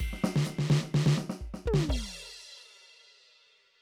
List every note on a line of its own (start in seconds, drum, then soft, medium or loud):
0.01 kick soft
0.01 hi-hat pedal soft
0.01 ride medium
0.07 kick soft
0.09 kick soft
0.14 snare soft
0.25 snare medium
0.37 snare loud
0.46 snare soft
0.46 hi-hat pedal loud
0.60 snare medium
0.71 snare loud
0.84 snare soft
0.95 snare loud
1.07 snare loud
1.19 snare medium
1.31 snare medium
1.42 kick soft
1.55 snare soft
1.67 kick soft
1.67 mid tom loud
1.75 snare loud
1.90 kick soft
1.90 crash loud
1.96 kick soft